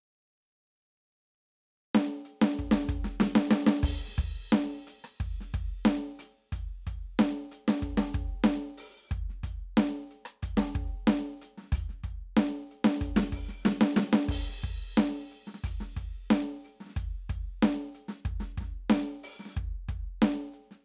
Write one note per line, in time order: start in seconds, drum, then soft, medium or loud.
1.95 snare loud
2.25 closed hi-hat medium
2.42 snare loud
2.58 closed hi-hat medium
2.58 kick medium
2.71 snare loud
2.89 closed hi-hat loud
2.89 kick loud
3.04 snare medium
3.20 snare loud
3.35 snare loud
3.51 snare loud
3.67 snare loud
3.83 kick loud
3.83 crash loud
4.08 snare soft
4.18 closed hi-hat loud
4.18 kick loud
4.52 closed hi-hat loud
4.52 snare loud
4.87 closed hi-hat loud
5.04 cross-stick medium
5.20 closed hi-hat medium
5.20 kick medium
5.40 snare soft
5.54 closed hi-hat medium
5.54 kick medium
5.85 closed hi-hat loud
5.85 snare loud
6.19 closed hi-hat loud
6.52 closed hi-hat loud
6.52 kick medium
6.87 closed hi-hat medium
6.87 kick medium
7.19 closed hi-hat loud
7.19 snare loud
7.52 closed hi-hat loud
7.68 snare loud
7.82 closed hi-hat medium
7.82 kick medium
7.97 snare loud
8.14 closed hi-hat medium
8.14 kick loud
8.44 open hi-hat loud
8.44 snare loud
8.78 open hi-hat loud
9.09 closed hi-hat medium
9.09 kick medium
9.09 hi-hat pedal soft
9.29 snare soft
9.35 snare soft
9.43 closed hi-hat loud
9.43 kick medium
9.77 closed hi-hat loud
9.77 snare loud
10.11 closed hi-hat soft
10.25 cross-stick medium
10.43 closed hi-hat loud
10.43 kick medium
10.57 snare loud
10.70 snare soft
10.75 kick loud
10.75 closed hi-hat soft
11.07 closed hi-hat loud
11.07 snare loud
11.42 closed hi-hat loud
11.58 snare soft
11.63 snare soft
11.72 closed hi-hat loud
11.72 kick loud
11.89 snare soft
12.04 closed hi-hat medium
12.04 kick medium
12.37 closed hi-hat loud
12.37 snare loud
12.71 closed hi-hat soft
12.84 snare loud
13.01 closed hi-hat loud
13.01 kick medium
13.16 snare loud
13.30 open hi-hat loud
13.30 kick medium
13.30 snare soft
13.48 snare soft
13.63 snare loud
13.63 hi-hat pedal soft
13.81 snare loud
13.96 snare loud
14.13 snare loud
14.29 kick loud
14.29 crash loud
14.49 snare soft
14.62 kick medium
14.62 closed hi-hat soft
14.97 closed hi-hat loud
14.97 snare loud
15.31 closed hi-hat medium
15.47 snare soft
15.54 snare soft
15.64 closed hi-hat loud
15.64 kick medium
15.80 snare soft
15.96 closed hi-hat medium
15.96 kick medium
16.30 open hi-hat loud
16.30 snare loud
16.64 open hi-hat medium
16.64 hi-hat pedal soft
16.80 snare soft
16.86 snare soft
16.89 snare soft
16.96 closed hi-hat loud
16.96 kick medium
17.29 closed hi-hat medium
17.29 kick medium
17.63 closed hi-hat loud
17.63 snare loud
17.95 closed hi-hat medium
18.08 snare medium
18.25 kick medium
18.25 closed hi-hat medium
18.40 snare medium
18.57 closed hi-hat medium
18.57 kick medium
18.57 snare soft
18.90 open hi-hat loud
18.90 snare loud
18.97 snare soft
19.23 open hi-hat loud
19.39 snare soft
19.45 snare soft
19.48 snare soft
19.51 snare soft
19.51 hi-hat pedal soft
19.57 kick medium
19.57 closed hi-hat medium
19.89 kick medium
19.89 closed hi-hat medium
20.22 closed hi-hat loud
20.22 snare loud
20.54 closed hi-hat medium
20.71 snare soft